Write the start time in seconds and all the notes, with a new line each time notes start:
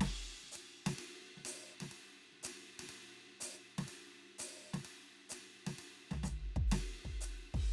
0.01 snare, ride
0.43 snare
0.52 hi-hat pedal, ride
0.86 snare, ride
0.99 hi-hat pedal, ride
1.37 snare
1.45 hi-hat pedal, ride
1.81 snare, ride
1.92 ride
2.32 snare
2.41 snare, hi-hat pedal
2.45 ride
2.80 snare, ride
2.89 ride
3.41 hi-hat pedal, ride
3.78 snare, ride
3.87 hi-hat pedal, ride
4.39 hi-hat pedal, ride
4.74 snare, ride
4.84 hi-hat pedal, ride
5.30 hi-hat pedal, ride
5.67 snare, ride
5.75 hi-hat pedal
5.79 ride
6.11 snare, floor tom
6.24 snare, floor tom, hi-hat pedal
6.56 kick
6.68 hi-hat pedal, ride
6.72 snare
7.05 kick
7.21 hi-hat pedal, ride
7.54 kick, crash